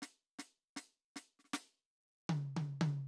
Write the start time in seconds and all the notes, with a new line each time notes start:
0.02 snare
0.39 snare
0.76 snare
1.16 snare
1.39 snare
1.44 snare
1.53 snare
2.29 high tom
2.56 high tom
2.81 high tom